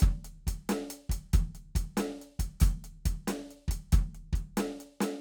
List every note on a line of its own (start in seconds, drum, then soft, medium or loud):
0.01 kick loud
0.01 closed hi-hat loud
0.25 closed hi-hat medium
0.48 kick medium
0.48 closed hi-hat loud
0.70 snare loud
0.70 closed hi-hat loud
0.91 closed hi-hat loud
1.10 kick medium
1.10 closed hi-hat loud
1.34 kick loud
1.34 closed hi-hat loud
1.56 closed hi-hat medium
1.76 kick medium
1.76 closed hi-hat loud
1.98 snare loud
1.98 closed hi-hat loud
2.22 closed hi-hat medium
2.40 kick medium
2.40 closed hi-hat loud
2.61 closed hi-hat loud
2.61 kick loud
2.85 closed hi-hat medium
3.06 kick medium
3.06 closed hi-hat loud
3.28 snare loud
3.28 closed hi-hat loud
3.51 closed hi-hat medium
3.69 kick medium
3.69 closed hi-hat loud
3.93 kick loud
3.93 closed hi-hat loud
4.15 closed hi-hat soft
4.34 kick medium
4.34 closed hi-hat medium
4.58 snare loud
4.58 closed hi-hat loud
4.81 closed hi-hat medium
5.01 snare loud
5.01 closed hi-hat loud